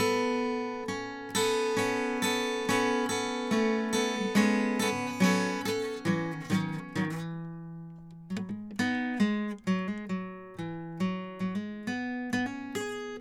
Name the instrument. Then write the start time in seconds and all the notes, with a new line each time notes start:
acoustic guitar
0.00 B3 A4
0.90 C#4
1.36 B3 A4
1.78 B3 C#4
2.23 B3 A4
2.70 B3 C#4 A4
3.10 B3 A4
3.52 A3 C#4
3.94 B3 A4
4.36 G#3 B3 C#4
4.81 B3 A4
5.21 F#3 B3 C#4
5.26 A4
5.66 A4
6.06 E3 C#4
6.51 D#3 C#4
6.97 D#3 F#3
7.12 E3
8.31 F#3
8.50 G#3
8.80 B3 D#4
9.21 G#3
9.68 F#3
9.89 G#3
10.11 F#3
10.60 E3
11.01 F#3
11.41 F#3
11.56 G#3
11.88 B3
12.34 B3
12.47 C#4
12.76 G#4